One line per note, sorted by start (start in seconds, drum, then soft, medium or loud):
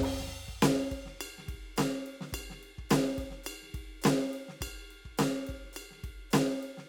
0.01 kick medium
0.01 crash loud
0.07 kick soft
0.20 snare soft
0.27 snare soft
0.48 kick soft
0.62 snare loud
0.62 hi-hat pedal medium
0.62 ride bell loud
0.91 kick soft
0.91 ride soft
0.97 kick soft
1.05 snare soft
1.21 hi-hat pedal soft
1.21 ride bell loud
1.38 snare soft
1.46 kick soft
1.46 snare soft
1.46 ride medium
1.54 kick soft
1.57 kick soft
1.76 snare loud
1.76 hi-hat pedal medium
1.76 ride bell loud
2.06 ride soft
2.21 snare medium
2.29 kick soft
2.29 hi-hat pedal soft
2.34 ride bell loud
2.38 kick soft
2.50 snare soft
2.63 ride soft
2.78 kick soft
2.90 snare loud
2.90 hi-hat pedal medium
2.90 ride bell loud
3.02 snare soft
3.18 kick soft
3.18 ride medium
3.24 kick soft
3.27 kick soft
3.27 snare soft
3.44 hi-hat pedal medium
3.44 ride bell loud
3.62 snare soft
3.68 snare soft
3.74 kick soft
3.74 ride medium
3.83 kick soft
4.02 snare loud
4.02 hi-hat pedal medium
4.02 ride bell loud
4.33 ride medium
4.48 snare soft
4.61 kick soft
4.61 ride bell loud
4.67 kick soft
4.70 kick soft
4.91 ride soft
5.05 kick soft
5.18 snare loud
5.18 hi-hat pedal medium
5.18 ride bell loud
5.47 kick soft
5.47 ride medium
5.55 kick soft
5.57 kick soft
5.64 snare soft
5.73 hi-hat pedal medium
5.73 ride bell loud
5.91 snare soft
5.98 snare soft
6.04 kick soft
6.04 ride soft
6.09 kick soft
6.31 snare loud
6.31 hi-hat pedal medium
6.31 ride bell loud
6.63 ride soft
6.77 snare soft